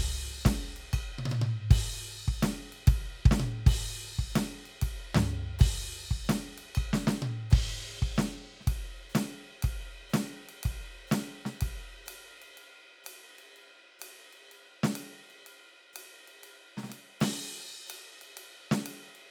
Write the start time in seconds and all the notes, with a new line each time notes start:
0.41 hi-hat pedal
0.46 kick, snare, ride
0.77 ride
0.94 kick, ride bell
1.19 high tom
1.26 hi-hat pedal, high tom
1.32 high tom
1.42 high tom
1.71 kick, crash
2.28 kick
2.34 hi-hat pedal
2.43 snare, ride
2.73 ride
2.88 kick, ride
3.26 kick, hi-hat pedal
3.32 snare
3.40 high tom
3.67 kick, crash
4.19 kick
4.30 hi-hat pedal
4.36 snare, ride
4.66 ride
4.82 kick, ride
5.15 snare, hi-hat pedal, floor tom
5.59 kick, crash
6.11 kick
6.25 hi-hat pedal
6.29 snare, ride
6.58 ride
6.76 kick, ride bell
6.94 snare
7.08 snare
7.23 high tom
7.51 kick, crash, ride
8.03 kick
8.16 snare, hi-hat pedal
8.61 snare
8.68 kick, snare, ride
9.10 hi-hat pedal
9.15 snare, ride
9.63 kick, ride
10.10 hi-hat pedal
10.14 snare, ride
10.49 ride
10.64 kick, ride
11.08 hi-hat pedal
11.12 snare, ride
11.46 snare
11.61 kick, ride
12.06 hi-hat pedal, ride
12.42 ride
12.58 ride
13.04 hi-hat pedal, ride
13.39 ride
13.57 ride
14.00 hi-hat pedal, ride
14.33 ride
14.52 ride
14.84 snare
14.92 hi-hat pedal, ride
15.31 ride
15.47 ride
15.93 hi-hat pedal, ride
16.28 ride
16.44 ride
16.78 snare
16.84 snare, hi-hat pedal
16.89 snare, ride
17.21 snare, crash
17.87 hi-hat pedal, ride
18.22 ride
18.38 ride
18.72 snare, hi-hat pedal
18.86 ride
19.16 ride